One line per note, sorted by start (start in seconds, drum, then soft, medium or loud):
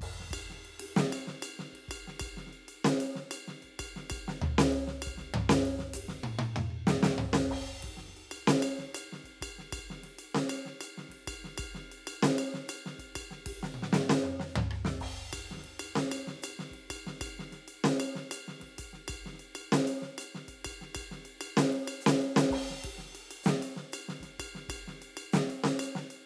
0.01 kick soft
0.01 hi-hat pedal soft
0.01 crash medium
0.09 kick soft
0.20 snare soft
0.31 kick soft
0.31 ride bell loud
0.50 snare soft
0.59 cross-stick soft
0.65 ride medium
0.80 ride loud
0.97 snare loud
1.13 ride bell loud
1.27 snare medium
1.42 hi-hat pedal medium
1.42 ride bell loud
1.59 snare medium
1.73 kick soft
1.73 ride medium
1.77 snare soft
1.88 kick soft
1.88 hi-hat pedal soft
1.88 ride bell loud
2.08 snare soft
2.20 kick soft
2.20 ride bell loud
2.27 kick soft
2.37 snare soft
2.47 snare soft
2.53 ride bell soft
2.68 ride bell medium
2.85 snare loud
3.00 ride bell medium
3.16 snare medium
3.31 hi-hat pedal medium
3.31 ride bell loud
3.48 snare soft
3.61 kick soft
3.61 snare soft
3.61 ride bell soft
3.67 snare soft
3.79 kick soft
3.79 hi-hat pedal soft
3.79 ride bell loud
3.96 snare soft
4.10 kick soft
4.10 ride bell loud
4.18 kick soft
4.28 snare medium
4.42 floor tom loud
4.58 snare loud
4.73 ride medium
4.88 snare medium
5.02 ride bell loud
5.07 kick soft
5.18 snare soft
5.34 floor tom loud
5.49 snare loud
5.59 hi-hat pedal soft
5.66 ride medium
5.79 snare medium
5.94 kick soft
5.94 hi-hat pedal loud
5.94 ride loud
6.08 snare medium
6.24 high tom loud
6.39 high tom loud
6.56 mid tom loud
6.71 cross-stick soft
6.87 snare loud
6.91 hi-hat pedal soft
7.03 snare loud
7.18 floor tom loud
7.33 snare loud
7.46 kick soft
7.46 hi-hat pedal soft
7.51 crash medium
7.55 kick soft
7.67 cross-stick soft
7.83 kick soft
7.83 ride medium
7.83 floor tom soft
7.91 kick soft
7.97 snare soft
8.08 snare soft
8.17 ride bell soft
8.31 ride bell loud
8.48 snare loud
8.62 ride bell loud
8.79 snare soft
8.95 hi-hat pedal loud
8.95 ride bell loud
9.12 snare soft
9.24 kick soft
9.24 ride bell soft
9.28 snare soft
9.41 kick soft
9.41 ride bell loud
9.47 kick soft
9.58 snare soft
9.73 kick soft
9.73 ride bell loud
9.79 kick soft
9.90 snare soft
10.03 snare soft
10.03 ride medium
10.19 ride bell medium
10.35 snare medium
10.50 ride bell loud
10.66 snare soft
10.81 hi-hat pedal medium
10.81 ride bell loud
10.98 snare soft
11.09 kick soft
11.09 snare soft
11.09 ride medium
11.27 kick soft
11.27 ride bell loud
11.44 snare soft
11.58 kick soft
11.58 ride bell loud
11.65 kick soft
11.75 snare soft
11.92 ride bell medium
12.07 ride bell loud
12.23 snare loud
12.38 ride bell loud
12.54 snare medium
12.69 hi-hat pedal medium
12.69 ride bell loud
12.86 snare medium
12.99 kick soft
12.99 ride bell medium
13.16 kick soft
13.16 ride bell loud
13.31 snare soft
13.46 kick soft
13.46 ride loud
13.52 kick soft
13.63 snare medium
13.74 high tom medium
13.83 snare medium
13.93 snare loud
14.10 snare loud
14.24 mid tom medium
14.40 snare medium
14.49 hi-hat pedal soft
14.56 floor tom loud
14.71 cross-stick medium
14.85 snare medium
15.00 kick soft
15.00 hi-hat pedal soft
15.00 crash medium
15.11 kick soft
15.17 cross-stick soft
15.33 kick soft
15.33 ride bell loud
15.51 snare soft
15.57 snare soft
15.62 snare soft
15.62 ride medium
15.80 ride bell loud
15.96 snare medium
16.12 ride bell loud
16.27 snare medium
16.43 hi-hat pedal loud
16.43 ride bell loud
16.59 snare medium
16.71 kick soft
16.71 snare soft
16.71 ride medium
16.90 kick soft
16.90 ride bell loud
17.07 snare medium
17.21 kick soft
17.21 ride bell loud
17.27 kick soft
17.39 snare soft
17.52 snare soft
17.52 ride bell soft
17.68 ride bell medium
17.84 snare loud
18.00 ride bell loud
18.15 snare medium
18.31 hi-hat pedal loud
18.31 ride bell loud
18.48 snare soft
18.60 kick soft
18.60 snare soft
18.60 ride medium
18.78 kick soft
18.78 ride bell loud
18.93 snare soft
19.08 kick soft
19.08 ride bell loud
19.15 kick soft
19.26 snare soft
19.33 snare soft
19.40 ride bell medium
19.55 ride bell loud
19.72 snare loud
19.87 ride bell medium
20.02 snare soft
20.18 hi-hat pedal loud
20.18 ride bell loud
20.35 snare soft
20.48 kick soft
20.48 ride bell medium
20.65 kick soft
20.65 ride bell loud
20.81 snare soft
20.95 kick soft
20.95 ride bell loud
21.11 snare soft
21.19 snare soft
21.25 ride bell medium
21.41 ride bell loud
21.57 snare loud
21.65 snare soft
21.73 ride medium
21.88 ride bell loud
22.01 hi-hat pedal medium
22.06 snare loud
22.21 ride bell medium
22.36 snare loud
22.46 snare soft
22.51 kick soft
22.51 crash loud
22.57 kick soft
22.70 snare soft
22.84 kick soft
22.84 ride loud
22.98 snare soft
23.04 snare soft
23.10 snare soft
23.15 ride bell medium
23.31 ride bell medium
23.43 snare loud
23.43 hi-hat pedal medium
23.62 ride bell medium
23.76 snare medium
23.92 hi-hat pedal medium
23.92 ride bell loud
24.09 snare medium
24.20 kick soft
24.20 snare soft
24.20 ride bell medium
24.39 kick soft
24.39 ride bell loud
24.55 snare soft
24.69 kick soft
24.69 ride bell loud
24.88 snare soft
24.94 snare soft
25.00 snare soft
25.00 ride bell medium
25.17 ride bell loud
25.33 snare loud
25.33 hi-hat pedal medium
25.50 ride bell medium
25.64 snare loud
25.79 hi-hat pedal medium
25.79 ride bell loud
25.95 snare medium
26.10 ride bell medium